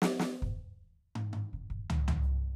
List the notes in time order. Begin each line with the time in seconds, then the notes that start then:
0.02 snare
0.20 snare
0.42 kick
1.16 mid tom
1.33 mid tom
1.53 kick
1.70 kick
1.90 floor tom
2.08 floor tom
2.23 hi-hat pedal